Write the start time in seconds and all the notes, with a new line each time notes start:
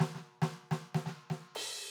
0.01 snare
0.15 snare
0.42 snare
0.72 snare
0.95 snare
1.07 snare
1.31 snare
1.56 crash